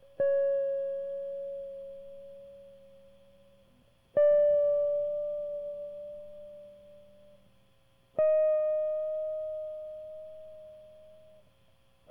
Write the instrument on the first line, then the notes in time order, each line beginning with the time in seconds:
electric guitar
0.20 C#5
4.17 D5
8.19 D#5